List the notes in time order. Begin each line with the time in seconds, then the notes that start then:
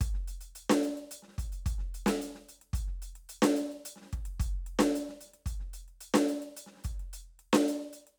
0.01 closed hi-hat, kick
0.14 snare
0.28 closed hi-hat, snare
0.41 closed hi-hat
0.55 closed hi-hat
0.70 snare
0.83 closed hi-hat
0.97 closed hi-hat
1.11 closed hi-hat
1.22 snare
1.28 snare
1.32 snare
1.37 closed hi-hat, kick, snare
1.42 snare
1.52 closed hi-hat
1.66 closed hi-hat, kick
1.78 snare
1.94 closed hi-hat
2.06 closed hi-hat, snare
2.20 closed hi-hat, snare
2.35 snare
2.49 closed hi-hat
2.61 closed hi-hat
2.73 closed hi-hat, kick
2.87 snare
3.02 closed hi-hat
3.15 closed hi-hat
3.29 closed hi-hat
3.42 snare
3.56 closed hi-hat
3.72 closed hi-hat
3.85 closed hi-hat
3.96 snare
4.00 snare
4.02 snare
4.05 snare
4.13 kick, closed hi-hat
4.25 closed hi-hat
4.40 closed hi-hat, kick
4.66 closed hi-hat
4.79 snare, closed hi-hat
4.95 closed hi-hat
5.08 snare
5.13 snare
5.19 closed hi-hat, snare
5.22 snare
5.26 snare
5.31 snare, closed hi-hat
5.46 closed hi-hat, kick
5.60 snare
5.71 snare
5.73 closed hi-hat, snare
5.88 closed hi-hat
6.01 closed hi-hat
6.14 snare
6.28 closed hi-hat
6.42 closed hi-hat
6.57 closed hi-hat
6.66 snare
6.71 snare
6.75 snare
6.77 snare
6.83 closed hi-hat, kick, snare
6.87 snare
6.91 snare
6.94 snare
6.97 snare, closed hi-hat
7.00 snare
7.04 snare
7.13 closed hi-hat
7.39 closed hi-hat
7.53 snare, closed hi-hat
7.68 closed hi-hat
7.93 closed hi-hat
8.07 closed hi-hat